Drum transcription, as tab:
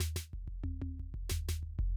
SD |oo------oo--|
T1 |----oo------|
FT |oo--oo--oo--|
BD |--gg--gg--go|